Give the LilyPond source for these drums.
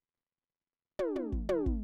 \new DrumStaff \drummode { \time 4/4 \tempo 4 = 122 r4 r4 \tuplet 3/2 { <tommh tomfh>8 <tomfh tommh>8 bd8 <tomfh tommh>8 bd8 r8 } | }